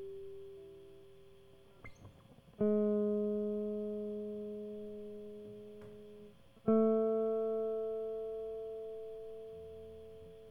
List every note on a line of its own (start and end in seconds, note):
2.62 5.87 G#3
6.69 10.28 A3